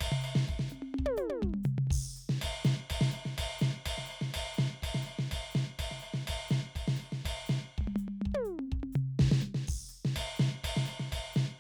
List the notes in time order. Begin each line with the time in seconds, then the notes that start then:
0.01 kick, ride bell
0.07 kick
0.12 floor tom
0.21 hi-hat pedal, ride
0.36 snare
0.48 kick, ride bell
0.56 kick, snare
0.70 hi-hat pedal, high tom
0.95 high tom
0.99 kick
1.05 kick, high tom
1.17 hi-hat pedal, high tom
1.30 high tom
1.43 kick, mid tom
1.50 kick
1.54 mid tom
1.64 hi-hat pedal, floor tom
1.79 floor tom
1.88 kick, floor tom
1.92 crash
2.06 kick
2.16 hi-hat pedal
2.30 snare
2.39 hi-hat pedal, ride bell
2.44 kick
2.49 kick
2.64 snare, hi-hat pedal
2.90 kick, ride bell
3.01 snare
3.11 hi-hat pedal, ride
3.26 snare
3.38 kick, ride bell
3.45 kick
3.59 snare, hi-hat pedal
3.86 kick, ride bell
3.92 kick
3.98 snare
4.06 hi-hat pedal
4.11 ride
4.22 snare
4.34 kick, ride bell
4.54 hi-hat pedal
4.59 snare
4.83 kick, ride bell
4.89 kick
4.95 snare
5.02 hi-hat pedal
5.07 ride
5.19 snare
5.32 kick, ride bell
5.38 kick
5.51 hi-hat pedal
5.55 snare
5.79 kick, ride bell
5.92 snare
6.00 hi-hat pedal, ride
6.14 snare
6.28 kick, ride bell
6.35 kick
6.48 snare, hi-hat pedal
6.76 kick, ride bell
6.82 kick
6.88 snare
6.96 hi-hat pedal
7.00 ride
7.13 snare
7.25 kick, ride bell
7.32 kick
7.46 snare, hi-hat pedal
7.78 kick, mid tom
7.85 kick, mid tom
7.90 kick
7.96 hi-hat pedal, mid tom
8.08 mid tom
8.22 kick, mid tom
8.32 kick, high tom
8.45 hi-hat pedal
8.60 high tom
8.72 kick
8.80 kick, high tom
8.93 hi-hat pedal, floor tom
9.20 kick, snare
9.28 kick, snare
9.41 hi-hat pedal, mid tom
9.55 snare
9.68 kick, crash
9.76 kick
9.89 hi-hat pedal
10.05 snare
10.16 kick, ride bell
10.36 snare, hi-hat pedal
10.48 snare
10.64 kick, ride bell
10.70 kick
10.77 snare
10.86 hi-hat pedal, ride
11.00 snare
11.12 kick, ride bell
11.19 kick
11.33 snare, hi-hat pedal